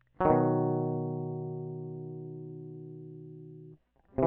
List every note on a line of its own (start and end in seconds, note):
0.21 3.76 F#3
0.26 3.78 D#3
0.31 3.76 B2
4.19 4.27 C3